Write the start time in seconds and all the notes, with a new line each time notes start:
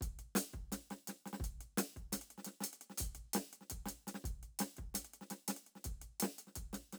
0.01 kick, closed hi-hat
0.19 closed hi-hat
0.35 closed hi-hat, snare
0.53 kick, closed hi-hat
0.72 snare, closed hi-hat
0.91 snare, closed hi-hat
1.08 snare, closed hi-hat
1.26 snare, closed hi-hat
1.33 snare
1.40 kick
1.44 closed hi-hat
1.61 closed hi-hat
1.78 snare, closed hi-hat
1.96 kick, closed hi-hat
2.12 snare, closed hi-hat
2.21 closed hi-hat
2.31 closed hi-hat
2.38 snare
2.45 snare, closed hi-hat
2.61 snare, closed hi-hat
2.73 closed hi-hat
2.81 closed hi-hat
2.90 snare
2.98 closed hi-hat, kick
3.15 closed hi-hat
3.34 snare, closed hi-hat
3.53 closed hi-hat
3.61 snare
3.70 kick, closed hi-hat
3.86 snare, closed hi-hat
4.07 snare, closed hi-hat
4.15 snare
4.24 kick, closed hi-hat
4.43 closed hi-hat
4.59 snare, closed hi-hat
4.77 kick, closed hi-hat
4.94 snare, closed hi-hat
5.05 closed hi-hat
5.14 closed hi-hat
5.21 snare
5.30 snare, closed hi-hat
5.48 snare, closed hi-hat
5.57 closed hi-hat
5.67 closed hi-hat
5.76 snare
5.84 kick, closed hi-hat
6.02 closed hi-hat
6.20 snare, closed hi-hat
6.39 closed hi-hat
6.47 snare
6.56 kick, closed hi-hat
6.73 snare, closed hi-hat
6.93 snare, closed hi-hat